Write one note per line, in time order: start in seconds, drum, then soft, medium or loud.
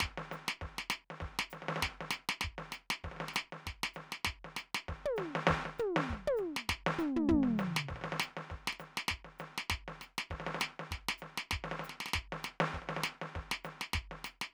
0.01 kick soft
0.01 snare loud
0.18 snare medium
0.32 snare soft
0.32 hi-hat pedal medium
0.49 snare loud
0.62 kick soft
0.62 snare soft
0.79 snare medium
0.91 snare loud
0.91 hi-hat pedal medium
1.11 snare soft
1.22 kick soft
1.40 snare loud
1.51 snare soft
1.51 hi-hat pedal medium
1.63 snare soft
1.69 snare medium
1.77 snare medium
1.83 kick soft
1.83 snare loud
2.01 snare soft
2.11 snare loud
2.11 hi-hat pedal medium
2.30 snare loud
2.42 kick soft
2.42 snare loud
2.59 snare soft
2.73 snare medium
2.73 hi-hat pedal medium
2.91 snare loud
3.05 kick soft
3.05 snare soft
3.12 snare soft
3.17 snare soft
3.21 snare medium
3.29 snare medium
3.34 snare loud
3.34 hi-hat pedal medium
3.53 snare soft
3.67 kick soft
3.67 snare medium
3.84 snare loud
3.94 snare soft
3.94 hi-hat pedal soft
4.13 snare medium
4.25 kick soft
4.25 snare loud
4.45 snare soft
4.57 snare medium
4.57 hi-hat pedal soft
4.75 snare loud
4.89 kick soft
4.89 snare soft
5.06 high tom loud
5.17 snare medium
5.17 hi-hat pedal soft
5.36 snare medium
5.48 kick soft
5.48 snare loud
5.66 snare soft
5.79 hi-hat pedal medium
5.79 mid tom loud
5.97 snare loud
6.10 kick soft
6.10 snare soft
6.28 high tom loud
6.37 snare soft
6.37 hi-hat pedal medium
6.57 snare loud
6.70 kick soft
6.70 snare loud
6.87 snare loud
6.99 floor tom medium
6.99 hi-hat pedal medium
7.16 floor tom loud
7.29 kick soft
7.29 floor tom loud
7.44 snare soft
7.59 snare medium
7.59 hi-hat pedal medium
7.77 snare loud
7.89 kick soft
7.89 snare soft
7.97 snare soft
8.02 snare soft
8.05 snare medium
8.13 snare medium
8.20 snare loud
8.20 hi-hat pedal medium
8.38 snare medium
8.51 kick soft
8.51 snare soft
8.68 snare loud
8.73 snare soft
8.80 snare soft
8.80 hi-hat pedal medium
8.98 snare loud
9.09 kick soft
9.09 snare loud
9.25 snare soft
9.39 snare soft
9.39 hi-hat pedal medium
9.58 snare loud
9.70 kick soft
9.70 snare loud
9.89 snare soft
10.02 snare soft
10.02 hi-hat pedal medium
10.19 snare loud
10.31 kick soft
10.31 snare soft
10.41 snare soft
10.47 snare medium
10.55 snare medium
10.61 snare loud
10.61 hi-hat pedal medium
10.80 snare soft
10.92 kick soft
10.92 snare medium
11.09 snare loud
11.19 hi-hat pedal medium
11.23 snare soft
11.38 snare loud
11.52 kick soft
11.52 snare loud
11.65 snare medium
11.72 snare medium
11.80 snare soft
11.85 hi-hat pedal medium
11.90 snare soft
12.01 snare medium
12.07 snare medium
12.09 snare soft
12.14 kick soft
12.14 snare loud
12.33 snare medium
12.44 snare medium
12.44 hi-hat pedal medium
12.61 snare loud
12.74 kick soft
12.74 snare soft
12.83 snare soft
12.88 snare soft
12.88 snare medium
12.97 snare medium
13.04 snare loud
13.04 hi-hat pedal medium
13.22 snare medium
13.36 kick soft
13.36 snare soft
13.52 snare loud
13.65 snare soft
13.65 hi-hat pedal medium
13.82 snare medium
13.94 kick soft
13.94 snare loud
14.12 snare soft
14.25 snare medium
14.25 hi-hat pedal medium
14.42 snare medium